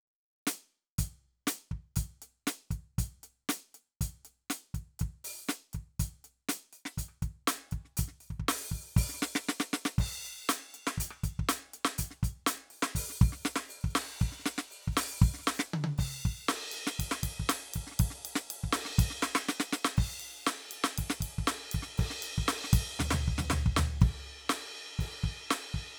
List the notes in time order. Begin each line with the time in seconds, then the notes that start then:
0.47 closed hi-hat, snare
0.98 closed hi-hat, kick
1.08 kick
1.47 closed hi-hat, snare
1.71 kick
1.96 closed hi-hat, kick
2.22 closed hi-hat
2.47 closed hi-hat, snare
2.71 kick, closed hi-hat
2.98 closed hi-hat, kick
3.23 closed hi-hat
3.49 closed hi-hat, snare
3.74 closed hi-hat
4.01 closed hi-hat, kick
4.25 closed hi-hat
4.50 closed hi-hat, snare
4.74 kick, closed hi-hat
4.99 kick, closed hi-hat
5.24 open hi-hat
5.48 closed hi-hat, snare, hi-hat pedal
5.73 kick, closed hi-hat
5.99 closed hi-hat, kick
6.24 closed hi-hat
6.49 closed hi-hat, snare
6.73 open hi-hat
6.85 snare
6.97 closed hi-hat, kick
7.08 cross-stick
7.22 kick, closed hi-hat
7.47 closed hi-hat, snare
7.71 kick, closed hi-hat
7.85 snare
7.97 closed hi-hat, kick
8.08 snare
8.20 open hi-hat
8.30 kick
8.39 kick
8.48 open hi-hat, snare
8.71 kick, open hi-hat
8.96 open hi-hat, kick
9.09 snare
9.14 snare
9.22 snare
9.35 snare
9.49 snare
9.60 snare
9.73 snare
9.85 snare
9.98 kick, hi-hat pedal, crash
10.24 closed hi-hat
10.49 closed hi-hat, snare
10.74 closed hi-hat
10.87 snare
10.98 closed hi-hat, kick
11.11 cross-stick
11.24 closed hi-hat, kick
11.39 kick
11.49 closed hi-hat, snare
11.73 closed hi-hat
11.85 snare
11.98 closed hi-hat, kick
12.11 snare
12.23 closed hi-hat, kick
12.46 closed hi-hat, snare
12.70 open hi-hat
12.82 snare
12.95 open hi-hat, kick
13.10 snare
13.21 open hi-hat, kick
13.32 snare
13.45 snare
13.56 snare
13.69 open hi-hat
13.84 kick
13.95 snare, crash
14.19 open hi-hat, kick
14.32 snare
14.39 snare
14.46 snare
14.58 snare
14.70 open hi-hat
14.88 kick
14.97 open hi-hat, snare
15.21 open hi-hat, kick
15.34 snare
15.39 snare
15.47 snare
15.54 hi-hat pedal
15.59 snare
15.73 high tom
15.84 high tom
15.98 kick, hi-hat pedal, crash
16.25 kick
16.48 snare, hi-hat pedal, ride
16.72 hi-hat pedal, ride
16.87 snare
16.99 kick, ride
17.11 snare
17.23 kick, ride
17.40 kick
17.49 snare, ride
17.74 kick, ride
17.87 snare
17.91 snare
17.99 kick, ride
18.10 snare
18.18 snare
18.25 ride
18.36 snare
18.50 ride
18.64 kick
18.73 snare, ride
18.85 snare
18.90 snare
18.98 kick, ride
19.10 snare
19.22 snare
19.35 snare
19.49 snare
19.60 snare
19.73 snare
19.85 snare
19.97 kick, crash
20.20 ride
20.47 snare, ride
20.71 ride
20.84 snare
20.98 kick, ride
21.10 snare
21.21 kick, ride
21.38 kick
21.47 snare, ride
21.71 kick, ride
21.82 snare
21.94 snare, ride
21.99 kick
22.10 snare
22.22 ride
22.38 kick
22.48 snare, ride
22.64 snare
22.73 kick, ride
22.99 snare, floor tom
23.11 snare, floor tom
23.28 kick
23.38 snare, floor tom
23.50 snare, floor tom
23.66 kick
23.76 snare, floor tom
24.01 kick, ride
24.49 snare, ride
24.99 kick, ride
25.24 kick
25.51 snare, ride
25.74 kick